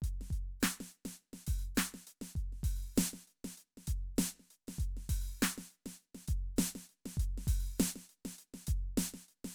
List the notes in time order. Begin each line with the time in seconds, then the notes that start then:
0.02 closed hi-hat, kick
0.21 snare
0.30 open hi-hat, kick
0.60 closed hi-hat, snare, hi-hat pedal
0.80 snare
0.91 closed hi-hat
1.05 closed hi-hat, snare
1.19 closed hi-hat
1.33 snare
1.47 open hi-hat, kick
1.75 closed hi-hat, snare, hi-hat pedal
1.94 snare
2.07 closed hi-hat
2.21 snare, closed hi-hat
2.35 closed hi-hat, kick
2.52 snare
2.63 open hi-hat, kick
2.95 closed hi-hat, snare, hi-hat pedal
3.13 snare
3.27 closed hi-hat
3.44 snare, closed hi-hat
3.57 closed hi-hat
3.77 snare
3.87 open hi-hat, kick
4.16 closed hi-hat, snare, hi-hat pedal
4.39 snare
4.50 closed hi-hat
4.67 snare, closed hi-hat
4.78 closed hi-hat, kick
4.96 snare
5.09 open hi-hat, kick
5.39 closed hi-hat, snare, hi-hat pedal
5.58 snare
5.70 closed hi-hat
5.86 snare, closed hi-hat
6.00 closed hi-hat
6.14 snare
6.28 closed hi-hat, kick
6.56 closed hi-hat, snare, hi-hat pedal
6.75 snare
6.89 closed hi-hat
7.05 snare, closed hi-hat
7.17 closed hi-hat, kick
7.37 snare
7.47 open hi-hat, kick
7.78 closed hi-hat, snare, hi-hat pedal
7.95 snare
8.09 closed hi-hat
8.25 snare, closed hi-hat
8.38 closed hi-hat
8.54 snare
8.67 closed hi-hat, kick
8.97 closed hi-hat, snare
9.13 snare
9.28 closed hi-hat
9.44 snare, closed hi-hat